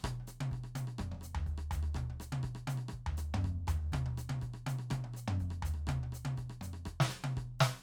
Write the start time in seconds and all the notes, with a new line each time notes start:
0.04 kick, cross-stick, high tom
0.20 high tom
0.23 high tom
0.28 cross-stick, hi-hat pedal
0.41 high tom
0.51 kick, cross-stick, hi-hat pedal
0.64 cross-stick
0.76 hi-hat pedal, high tom
0.88 cross-stick
0.99 kick, cross-stick, hi-hat pedal, mid tom
1.12 mid tom
1.15 mid tom
1.22 cross-stick, hi-hat pedal
1.35 floor tom
1.47 kick, hi-hat pedal
1.58 cross-stick
1.71 floor tom, hi-hat pedal
1.83 cross-stick
1.95 kick, cross-stick, hi-hat pedal, high tom
2.10 high tom
2.20 cross-stick, hi-hat pedal
2.33 high tom
2.44 kick, cross-stick
2.55 cross-stick
2.68 hi-hat pedal, high tom
2.78 cross-stick
2.89 cross-stick, hi-hat pedal
2.93 kick
3.07 floor tom
3.18 cross-stick, hi-hat pedal
3.35 mid tom
3.40 hi-hat pedal
3.45 kick, cross-stick
3.68 cross-stick, floor tom, hi-hat pedal
3.93 kick, cross-stick, hi-hat pedal, high tom
4.06 high tom
4.11 high tom
4.18 cross-stick, hi-hat pedal
4.30 high tom
4.42 kick, cross-stick, hi-hat pedal
4.54 cross-stick
4.67 hi-hat pedal, high tom
4.79 cross-stick
4.91 kick, cross-stick, hi-hat pedal, high tom
5.05 high tom
5.14 cross-stick, hi-hat pedal
5.28 mid tom
5.40 kick, hi-hat pedal
5.51 cross-stick
5.63 floor tom, hi-hat pedal
5.74 cross-stick
5.87 kick, cross-stick, hi-hat pedal, high tom
6.04 high tom
6.13 cross-stick, hi-hat pedal
6.25 high tom
6.37 kick, cross-stick, hi-hat pedal
6.50 cross-stick
6.62 hi-hat pedal, mid tom
6.74 cross-stick
6.86 kick, cross-stick, hi-hat pedal
7.01 snare
7.09 cross-stick, hi-hat pedal
7.24 high tom
7.37 kick, cross-stick
7.60 snare, hi-hat pedal